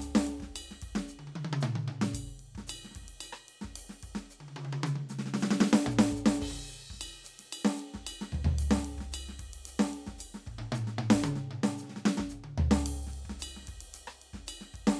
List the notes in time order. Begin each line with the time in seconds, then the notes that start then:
0.01 hi-hat pedal, ride bell
0.15 snare
0.27 ride
0.40 kick, snare
0.55 hi-hat pedal, ride bell
0.71 snare
0.82 kick, ride
0.88 kick
0.95 snare
1.08 hi-hat pedal
1.19 high tom
1.27 high tom
1.35 high tom
1.45 high tom
1.53 high tom
1.61 hi-hat pedal, mid tom
1.75 high tom
1.88 mid tom
2.01 snare
2.13 kick, hi-hat pedal, ride bell
2.20 kick
2.26 kick, cross-stick
2.39 ride
2.55 kick, snare
2.67 hi-hat pedal, ride bell
2.84 snare
2.91 snare
2.95 kick, snare, ride
3.01 kick, snare
3.08 ride
3.20 hi-hat pedal, ride bell
3.32 cross-stick
3.48 ride
3.61 kick, snare
3.76 hi-hat pedal, ride
3.89 snare
4.03 kick, ride
4.15 snare
4.30 hi-hat pedal
4.40 high tom
4.48 high tom
4.56 high tom
4.65 high tom
4.73 high tom
4.83 hi-hat pedal, high tom
4.95 high tom
5.09 snare, hi-hat pedal
5.19 snare
5.26 snare
5.34 snare
5.40 snare, hi-hat pedal
5.50 snare
5.60 snare
5.67 hi-hat pedal
5.73 snare
5.86 kick, hi-hat pedal, mid tom
5.93 kick
5.99 snare
6.11 kick
6.16 kick, hi-hat pedal
6.26 snare
6.33 cross-stick
6.41 kick, crash
6.50 kick, high tom
6.56 kick
6.68 hi-hat pedal
6.90 kick, snare
7.01 ride bell
7.24 hi-hat pedal, ride
7.39 snare, ride
7.52 ride bell
7.65 snare
7.76 hi-hat pedal, ride
7.94 kick, snare
8.07 hi-hat pedal, ride bell
8.21 snare
8.32 kick, floor tom
8.40 kick
8.44 floor tom
8.58 hi-hat pedal, ride
8.71 snare
8.76 snare
8.85 ride
8.98 kick, snare
9.12 hi-hat pedal, ride bell
9.29 snare
9.39 kick, ride
9.45 kick
9.53 ride
9.65 hi-hat pedal, ride
9.79 snare
9.93 ride
10.06 kick, snare
10.15 kick, hi-hat pedal
10.20 ride bell
10.34 snare
10.46 kick, mid tom
10.53 kick
10.58 mid tom
10.72 hi-hat pedal, mid tom
10.87 snare
10.98 mid tom
11.10 kick, snare
11.24 hi-hat pedal, high tom
11.35 snare
11.51 mid tom
11.63 snare
11.76 snare, hi-hat pedal
11.82 snare
11.87 snare
11.89 snare
11.96 snare
12.05 snare
12.17 kick, snare
12.29 hi-hat pedal, mid tom
12.44 closed hi-hat, high tom
12.58 floor tom
12.71 snare
12.85 hi-hat pedal, ride
13.07 snare
13.13 ride
13.25 kick
13.29 snare
13.36 snare, hi-hat pedal
13.42 ride bell
13.56 snare
13.62 snare
13.66 kick, snare, ride
13.73 kick
13.81 ride
13.94 hi-hat pedal, ride
14.07 cross-stick
14.22 ride
14.33 kick, snare
14.47 hi-hat pedal, ride bell
14.61 snare
14.74 kick, ride
14.87 snare